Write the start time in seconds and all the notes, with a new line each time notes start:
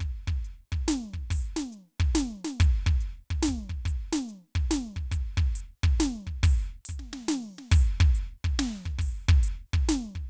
0.01 kick, closed hi-hat
0.28 kick
0.45 closed hi-hat
0.73 kick
0.89 closed hi-hat, snare
1.14 kick
1.19 snare
1.31 open hi-hat, kick
1.57 snare
1.73 closed hi-hat
2.01 kick
2.16 closed hi-hat, snare
2.45 snare
2.61 closed hi-hat, kick
2.87 kick
3.01 closed hi-hat
3.31 kick
3.43 closed hi-hat, snare
3.49 kick
3.70 kick
3.86 closed hi-hat, kick
4.13 snare
4.30 closed hi-hat
4.56 kick
4.72 closed hi-hat, snare
4.97 kick
5.12 closed hi-hat, kick
5.38 kick
5.56 closed hi-hat
5.84 kick
6.01 closed hi-hat, snare
6.28 kick
6.44 open hi-hat, kick
6.86 open hi-hat, kick, hi-hat pedal
7.00 snare
7.14 snare
7.29 snare
7.43 open hi-hat
7.59 snare
7.72 open hi-hat, kick
8.01 kick
8.16 closed hi-hat
8.45 kick
8.60 closed hi-hat, snare
8.86 kick
8.99 open hi-hat, kick
9.29 kick
9.44 closed hi-hat
9.74 kick
9.89 closed hi-hat, snare
10.16 kick